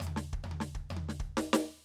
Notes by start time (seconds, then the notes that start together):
0.02 floor tom, hi-hat pedal
0.07 high tom
0.16 snare
0.33 kick
0.43 floor tom, hi-hat pedal
0.51 high tom
0.60 snare
0.75 kick
0.89 floor tom, hi-hat pedal
0.97 high tom
1.08 snare
1.20 kick
1.37 snare
1.53 snare